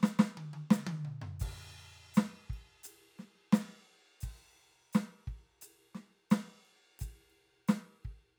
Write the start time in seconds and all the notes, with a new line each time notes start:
0.01 snare
0.03 snare, hi-hat pedal
0.20 snare
0.38 high tom
0.54 high tom
0.71 snare, hi-hat pedal
0.87 high tom
1.05 mid tom
1.22 floor tom
1.40 kick, hi-hat pedal, crash
2.15 snare, hi-hat pedal, ride
2.50 kick, ride
2.84 hi-hat pedal, ride
3.19 snare, ride
3.53 snare, hi-hat pedal, ride
4.21 kick, hi-hat pedal, ride, crash
4.93 snare, hi-hat pedal, ride
5.28 kick, ride
5.62 hi-hat pedal, ride
5.95 snare, ride
6.31 snare, hi-hat pedal, ride
6.66 ride
7.00 kick, hi-hat pedal, ride
7.31 ride
7.68 snare, hi-hat pedal, ride
8.05 kick, ride